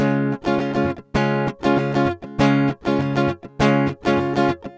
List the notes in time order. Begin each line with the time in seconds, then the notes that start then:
0.01 C#3 G#3 C#4 F4
0.48 C#3 G#3 C#4 F4
0.60 C#3 G#3 C#4 F4
0.76 C#3 G#3 C#4 F4
0.87 C#3 G#3
1.16 C#3 G#3 C#4 F4
1.66 C#3 G#3 C#4 F4
1.75 C#3 G#3 F4
1.79 C#4
1.97 C#3 G#3 C#4 F4
2.40 C#3 G#3 C#4 F4
2.88 C#3 G#3 C#4 F4
2.98 C#3 G#3 F4
3.02 C#4
3.18 C#3 G#3 C#4 F4
3.61 C#3 G#3 C#4 F4
4.08 G#3 C#4 F4
4.18 C#3 G#3 C#4 F4
4.38 C#3 G#3 C#4 F4
4.50 C#3